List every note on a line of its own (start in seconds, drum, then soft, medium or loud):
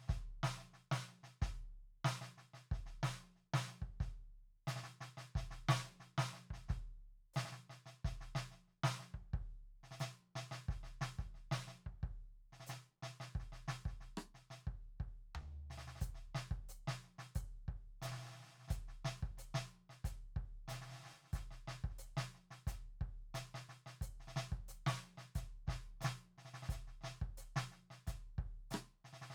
0.01 snare soft
0.09 kick medium
0.09 snare soft
0.44 snare medium
0.58 snare soft
0.74 snare soft
0.92 snare medium
1.09 snare soft
1.24 snare soft
1.42 kick medium
1.42 snare soft
2.05 snare medium
2.22 snare soft
2.38 snare soft
2.54 snare soft
2.72 kick medium
2.72 snare soft
2.87 snare soft
3.04 snare medium
3.21 snare soft
3.36 snare soft
3.54 snare medium
3.69 snare soft
3.82 kick soft
4.01 kick medium
4.01 snare soft
4.68 snare medium
4.68 hi-hat pedal medium
4.76 snare soft
4.84 snare soft
5.01 snare soft
5.18 snare soft
5.36 kick medium
5.36 snare soft
5.51 snare soft
5.69 snare loud
5.84 snare soft
6.00 snare soft
6.18 snare medium
6.34 snare soft
6.51 kick soft
6.51 snare soft
6.69 kick medium
6.69 snare soft
7.34 snare medium
7.34 hi-hat pedal soft
7.46 snare soft
7.53 snare soft
7.70 snare soft
7.86 snare soft
8.05 kick medium
8.05 snare soft
8.21 snare soft
8.36 snare medium
8.51 snare soft
8.68 snare soft
8.84 snare medium
9.00 snare soft
9.15 kick soft
9.34 kick medium
9.84 snare soft
9.92 snare soft
10.00 snare medium
10.00 hi-hat pedal medium
10.36 snare medium
10.52 snare medium
10.69 kick medium
10.69 snare soft
10.84 snare soft
11.02 snare medium
11.19 kick soft
11.19 snare soft
11.35 snare soft
11.52 snare medium
11.68 snare soft
11.87 kick soft
12.04 kick medium
12.53 snare soft
12.60 snare soft
12.67 snare medium
12.67 hi-hat pedal medium
13.03 snare medium
13.21 snare soft
13.36 kick medium
13.40 snare soft
13.53 snare soft
13.68 snare medium
13.86 kick medium
13.86 snare soft
14.01 snare soft
14.18 cross-stick medium
14.35 snare soft
14.51 snare soft
14.68 kick soft
15.01 kick soft
15.35 floor tom medium
15.71 snare soft
15.78 snare soft
15.88 snare soft
15.96 snare soft
16.02 kick medium
16.02 hi-hat pedal medium
16.15 snare soft
16.35 snare medium
16.52 kick medium
16.69 hi-hat pedal medium
16.88 snare medium
17.04 snare soft
17.19 snare soft
17.36 kick medium
17.36 hi-hat pedal medium
17.69 kick soft
18.02 snare soft
18.02 hi-hat pedal medium
18.05 snare soft
18.12 snare soft
18.14 snare soft
18.19 snare soft
18.23 snare soft
18.23 hi-hat pedal soft
18.26 snare soft
18.28 snare soft
18.31 snare soft
18.33 snare soft
18.37 snare soft
18.40 snare soft
18.43 snare soft
18.45 snare soft
18.50 snare soft
18.54 snare soft
18.57 snare soft
18.62 snare soft
18.68 kick medium
18.68 snare soft
18.68 hi-hat pedal medium
18.89 snare soft
19.05 snare medium
19.23 kick medium
19.23 snare soft
19.38 snare soft
19.38 hi-hat pedal medium
19.55 snare medium
19.73 snare soft
19.90 snare soft
20.05 kick medium
20.05 snare soft
20.05 hi-hat pedal medium
20.37 kick medium
20.68 snare soft
20.68 hi-hat pedal medium
20.72 snare soft
20.87 snare soft
20.90 snare soft
20.92 snare soft
20.95 snare soft
20.97 snare soft
21.00 snare soft
21.04 snare soft
21.06 snare soft
21.08 snare soft
21.10 snare soft
21.14 snare soft
21.18 snare soft
21.21 snare soft
21.24 snare soft
21.27 snare soft
21.33 kick medium
21.33 snare soft
21.33 hi-hat pedal medium
21.51 snare soft
21.68 snare medium
21.84 kick medium
21.90 snare soft
21.99 hi-hat pedal medium
22.03 snare soft
22.18 snare medium
22.35 snare soft
22.51 snare soft
22.68 kick medium
22.68 snare soft
22.68 hi-hat pedal medium
23.02 kick medium
23.35 snare medium
23.35 hi-hat pedal medium
23.55 snare soft
23.69 snare soft
23.87 snare soft
24.02 kick soft
24.02 hi-hat pedal medium
24.20 snare soft
24.28 snare soft
24.37 snare medium
24.53 kick medium
24.69 snare soft
24.69 hi-hat pedal medium
24.87 snare medium
25.03 snare soft
25.18 snare soft
25.36 kick medium
25.36 snare soft
25.36 hi-hat pedal medium
25.68 kick medium
25.68 snare soft
25.69 snare medium
26.01 snare soft
26.01 hi-hat pedal medium
26.05 snare medium
26.38 snare soft
26.45 snare soft
26.54 snare soft
26.63 snare soft
26.69 kick medium
26.69 snare soft
26.69 hi-hat pedal medium
26.88 snare soft
27.02 snare soft
27.04 snare medium
27.22 kick medium
27.38 snare soft
27.38 hi-hat pedal medium
27.57 snare medium
27.72 snare soft
27.91 snare soft
28.07 kick soft
28.07 snare soft
28.07 hi-hat pedal medium
28.39 kick medium
28.71 cross-stick medium
28.71 snare soft
28.71 hi-hat pedal medium
29.05 snare soft
29.13 snare soft
29.22 snare soft
29.31 snare soft